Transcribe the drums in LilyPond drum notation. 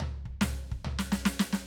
\new DrumStaff \drummode { \time 4/4 \tempo 4 = 144 \tuplet 3/2 { tomfh8 r8 bd8 <sn tomfh>8 r8 bd8 tomfh8 sn8 sn8 sn8 sn8 sn8 } | }